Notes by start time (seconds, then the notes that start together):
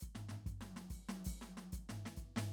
0.00 kick, hi-hat pedal
0.15 snare, floor tom
0.29 snare, floor tom
0.46 kick, hi-hat pedal
0.61 snare, high tom
0.76 snare, high tom
0.90 kick, hi-hat pedal
1.09 snare, high tom
1.24 kick, hi-hat pedal
1.41 snare, high tom
1.57 snare, high tom
1.72 kick, hi-hat pedal
1.89 snare, floor tom
2.05 snare, floor tom
2.16 kick, hi-hat pedal
2.36 snare, floor tom